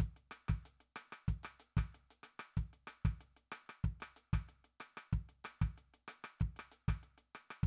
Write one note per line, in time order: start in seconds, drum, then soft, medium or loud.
0.01 kick medium
0.01 closed hi-hat medium
0.17 closed hi-hat soft
0.32 cross-stick medium
0.32 closed hi-hat medium
0.49 kick medium
0.49 cross-stick medium
0.66 closed hi-hat medium
0.81 closed hi-hat soft
0.97 cross-stick medium
0.97 closed hi-hat medium
1.13 cross-stick medium
1.29 kick medium
1.29 closed hi-hat medium
1.44 cross-stick medium
1.44 closed hi-hat medium
1.61 closed hi-hat medium
1.78 kick medium
1.78 cross-stick medium
1.95 closed hi-hat soft
2.11 closed hi-hat medium
2.24 cross-stick soft
2.24 closed hi-hat medium
2.40 cross-stick medium
2.58 kick medium
2.58 closed hi-hat medium
2.74 closed hi-hat soft
2.88 cross-stick medium
2.88 closed hi-hat medium
3.06 kick medium
3.06 cross-stick medium
3.22 closed hi-hat soft
3.38 closed hi-hat soft
3.53 cross-stick medium
3.53 closed hi-hat medium
3.70 cross-stick medium
3.85 kick medium
3.85 closed hi-hat soft
4.01 cross-stick medium
4.01 closed hi-hat soft
4.17 closed hi-hat medium
4.34 kick medium
4.34 cross-stick medium
4.50 closed hi-hat soft
4.65 closed hi-hat soft
4.81 cross-stick medium
4.81 closed hi-hat medium
4.98 cross-stick medium
5.14 kick medium
5.14 closed hi-hat soft
5.30 closed hi-hat soft
5.45 cross-stick medium
5.45 closed hi-hat medium
5.62 kick medium
5.62 cross-stick soft
5.79 closed hi-hat soft
5.95 closed hi-hat soft
6.09 cross-stick medium
6.09 closed hi-hat medium
6.25 cross-stick medium
6.41 kick medium
6.41 closed hi-hat soft
6.57 cross-stick medium
6.57 closed hi-hat soft
6.73 closed hi-hat medium
6.89 kick medium
6.89 cross-stick medium
7.04 closed hi-hat soft
7.19 closed hi-hat soft
7.36 cross-stick medium
7.36 closed hi-hat medium
7.51 cross-stick medium
7.64 kick medium